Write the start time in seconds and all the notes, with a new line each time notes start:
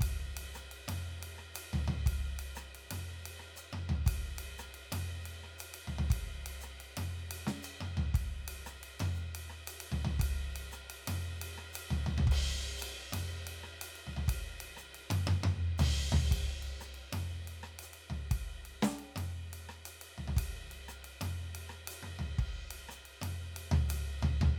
0.01 kick, ride
0.37 ride
0.55 cross-stick, hi-hat pedal
0.72 ride
0.88 mid tom, ride
1.23 ride
1.39 cross-stick
1.55 hi-hat pedal, ride
1.73 floor tom
1.88 floor tom
2.06 kick, ride
2.39 ride
2.56 cross-stick, hi-hat pedal
2.75 ride
2.91 mid tom, ride
3.26 ride
3.40 cross-stick
3.56 hi-hat pedal, ride bell
3.73 mid tom
3.89 floor tom
4.05 kick, hi-hat pedal, ride
4.39 ride
4.58 cross-stick, hi-hat pedal
4.74 ride
4.92 mid tom, ride
5.26 ride
5.44 cross-stick
5.59 hi-hat pedal, ride
5.74 ride
5.88 kick, floor tom
5.99 floor tom
6.08 kick, hi-hat pedal
6.12 ride
6.46 ride
6.61 cross-stick, hi-hat pedal
6.81 ride
6.97 mid tom, ride
7.31 ride
7.47 snare
7.63 hi-hat pedal, ride bell
7.81 mid tom
7.97 floor tom
8.15 kick, ride
8.48 ride
8.66 cross-stick, hi-hat pedal
8.83 ride
9.00 mid tom, ride bell
9.15 hi-hat pedal
9.35 ride
9.50 cross-stick
9.67 hi-hat pedal, ride
9.81 ride
9.92 kick, floor tom
10.05 floor tom
10.20 kick, ride
10.56 ride
10.72 cross-stick, hi-hat pedal
10.90 ride
11.08 mid tom, ride
11.21 hi-hat pedal
11.42 ride
11.58 cross-stick
11.73 hi-hat pedal, ride
11.91 floor tom
12.07 floor tom
12.18 floor tom
12.27 kick
12.32 ride
12.79 cross-stick, hi-hat pedal
12.83 ride
13.13 mid tom, ride
13.30 hi-hat pedal
13.47 ride
13.64 cross-stick
13.82 hi-hat pedal, ride
13.96 ride
14.07 floor tom
14.17 floor tom
14.28 kick, hi-hat pedal, ride
14.61 ride
14.77 cross-stick, hi-hat pedal
14.95 ride
15.11 mid tom, ride
15.26 hi-hat pedal, mid tom
15.44 mid tom
15.78 floor tom, hi-hat pedal, ride
16.12 floor tom
16.31 kick, ride
16.63 ride
16.81 cross-stick, hi-hat pedal
16.95 ride
17.13 mid tom, ride
17.30 hi-hat pedal
17.48 ride
17.63 cross-stick
17.79 hi-hat pedal, ride
17.94 ride
18.10 floor tom
18.31 kick, ride
18.65 ride
18.83 snare, hi-hat pedal
18.99 ride
19.16 mid tom, ride
19.53 ride
19.69 cross-stick
19.85 hi-hat pedal, ride
20.02 ride
20.18 floor tom
20.28 floor tom
20.37 kick, ride
20.72 ride
20.89 cross-stick, hi-hat pedal
21.05 ride
21.21 mid tom, ride
21.55 ride
21.70 cross-stick
21.88 hi-hat pedal, ride
22.03 mid tom
22.19 floor tom
22.39 kick, ride
22.55 ride
22.71 ride
22.89 cross-stick, hi-hat pedal
23.06 ride
23.22 mid tom, ride
23.57 ride
23.72 floor tom
23.89 hi-hat pedal, ride
24.23 floor tom
24.42 floor tom